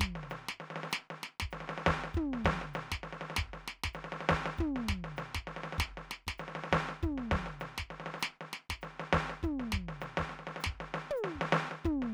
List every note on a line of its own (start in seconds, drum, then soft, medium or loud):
0.01 kick soft
0.01 snare loud
0.08 kick soft
0.16 snare soft
0.24 snare soft
0.30 snare medium
0.30 hi-hat pedal soft
0.49 snare loud
0.61 snare soft
0.71 snare soft
0.77 snare medium
0.84 snare medium
0.91 snare loud
0.91 hi-hat pedal soft
1.11 snare soft
1.24 snare medium
1.41 kick soft
1.41 snare loud
1.51 snare soft
1.51 hi-hat pedal soft
1.61 snare soft
1.68 snare soft
1.68 snare medium
1.87 kick soft
1.87 snare loud
1.94 kick soft
2.04 snare medium
2.14 kick soft
2.14 floor tom medium
2.14 hi-hat pedal soft
2.22 kick soft
2.34 snare soft
2.45 kick medium
2.45 snare loud
2.52 kick soft
2.55 kick soft
2.62 snare soft
2.74 snare medium
2.74 hi-hat pedal soft
2.92 kick soft
2.92 snare loud
3.04 snare soft
3.13 snare soft
3.22 snare medium
3.31 snare soft
3.37 kick soft
3.37 snare loud
3.37 hi-hat pedal soft
3.44 kick soft
3.48 kick soft
3.54 snare soft
3.68 snare medium
3.84 kick soft
3.84 snare loud
3.94 snare soft
3.94 hi-hat pedal soft
4.05 snare soft
4.13 snare medium
4.21 snare soft
4.30 kick soft
4.30 snare loud
4.46 snare medium
4.58 kick soft
4.58 floor tom loud
4.58 hi-hat pedal soft
4.66 kick soft
4.77 snare soft
4.89 kick soft
4.89 snare loud
4.96 kick soft
4.99 kick soft
5.05 snare soft
5.17 snare medium
5.17 hi-hat pedal soft
5.35 kick soft
5.35 snare medium
5.48 snare soft
5.57 snare soft
5.64 snare medium
5.73 snare medium
5.79 kick soft
5.79 snare loud
5.79 hi-hat pedal soft
5.85 kick soft
5.98 snare soft
6.12 snare medium
6.28 kick soft
6.28 snare loud
6.39 snare soft
6.39 hi-hat pedal soft
6.49 snare soft
6.56 snare medium
6.64 snare medium
6.73 kick soft
6.73 snare loud
6.90 snare soft
7.03 kick soft
7.03 floor tom medium
7.03 hi-hat pedal soft
7.10 kick soft
7.13 kick soft
7.18 snare soft
7.32 kick soft
7.32 snare loud
7.39 kick soft
7.42 kick soft
7.47 snare soft
7.60 snare medium
7.60 hi-hat pedal soft
7.79 kick soft
7.79 snare medium
7.91 snare soft
8.01 snare soft
8.07 snare medium
8.15 snare soft
8.20 snare loud
8.20 hi-hat pedal soft
8.42 snare soft
8.54 snare medium
8.70 kick soft
8.70 snare loud
8.82 snare soft
8.82 hi-hat pedal soft
9.00 snare medium
9.13 kick soft
9.13 snare loud
9.30 snare soft
9.44 kick soft
9.44 floor tom medium
9.44 hi-hat pedal soft
9.50 kick soft
9.60 snare soft
9.73 kick medium
9.73 snare loud
9.81 kick soft
9.89 snare soft
10.01 snare medium
10.01 hi-hat pedal soft
10.18 kick soft
10.18 snare medium
10.30 snare soft
10.40 snare soft
10.48 snare medium
10.57 snare soft
10.57 hi-hat pedal medium
10.65 kick soft
10.65 snare loud
10.73 kick soft
10.81 snare soft
10.95 snare medium
11.11 open hi-hat soft
11.11 high tom loud
11.17 hi-hat pedal medium
11.25 snare medium
11.36 kick soft
11.42 snare medium
11.53 snare loud
11.72 snare soft
11.85 kick soft
11.85 floor tom loud
11.85 hi-hat pedal soft
11.94 kick soft
12.03 snare soft